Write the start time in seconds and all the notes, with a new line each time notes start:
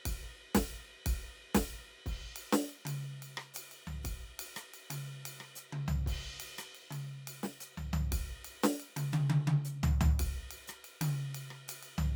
0.06 kick, ride
0.55 kick, snare, ride
1.06 kick, ride
1.34 ride
1.42 ride
1.55 kick, snare, ride
2.06 kick, ride
2.36 ride
2.53 snare, hi-hat pedal
2.70 ride
2.85 mid tom, ride
3.22 ride
3.37 cross-stick
3.54 hi-hat pedal, ride
3.72 ride
3.87 floor tom
4.03 kick, hi-hat pedal, ride
4.39 ride
4.56 cross-stick, hi-hat pedal
4.74 ride
4.90 mid tom, ride
5.26 ride
5.40 cross-stick
5.56 hi-hat pedal, ride bell
5.73 mid tom
5.88 floor tom
6.06 kick, ride
6.40 ride
6.58 cross-stick, hi-hat pedal
6.75 ride
6.91 mid tom, ride
7.27 ride
7.43 snare
7.60 hi-hat pedal, ride bell
7.78 floor tom
7.93 floor tom
8.12 kick, ride
8.30 ride
8.45 ride
8.63 snare, hi-hat pedal
8.80 ride
8.97 mid tom, ride
9.12 hi-hat pedal, mid tom
9.30 mid tom
9.47 mid tom
9.65 hi-hat pedal
9.83 floor tom
10.01 floor tom
10.20 kick, ride
10.51 ride
10.68 cross-stick, hi-hat pedal
10.84 ride
11.01 mid tom, ride
11.35 ride
11.51 cross-stick
11.68 hi-hat pedal, ride
11.83 ride
11.98 floor tom